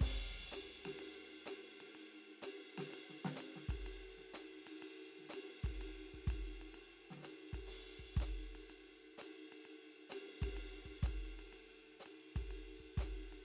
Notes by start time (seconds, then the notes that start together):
0.01 kick, ride
0.31 snare
0.36 snare
0.40 snare
0.43 snare
0.45 snare
0.52 hi-hat pedal, ride
0.85 snare, ride
0.98 hi-hat pedal, ride
1.46 hi-hat pedal, ride
1.80 snare, ride
1.95 ride
2.42 hi-hat pedal, ride
2.78 snare, ride
2.90 hi-hat pedal
2.94 ride
3.10 snare
3.25 snare
3.36 hi-hat pedal
3.41 ride
3.56 snare
3.69 kick, ride
3.79 hi-hat pedal
3.87 ride
4.17 snare
4.34 hi-hat pedal, ride
4.67 ride
4.83 ride
5.19 snare
5.23 snare
5.29 hi-hat pedal
5.34 ride
5.64 kick, ride
5.81 ride
6.14 kick
6.27 kick, ride
6.62 ride
6.75 ride
7.11 snare
7.16 snare
7.19 snare, hi-hat pedal
7.25 ride
7.53 kick, ride
7.67 ride
7.99 kick
8.17 kick, ride
8.21 hi-hat pedal
8.55 ride
8.70 ride
9.18 hi-hat pedal, ride
9.52 ride
9.65 ride
10.10 hi-hat pedal, ride
10.42 kick, ride
10.57 ride
10.86 kick
11.03 kick, hi-hat pedal, ride
11.39 ride
11.53 ride
12.00 hi-hat pedal
12.06 ride
12.36 kick, ride
12.51 ride
12.80 kick
12.97 kick, hi-hat pedal, ride
13.33 ride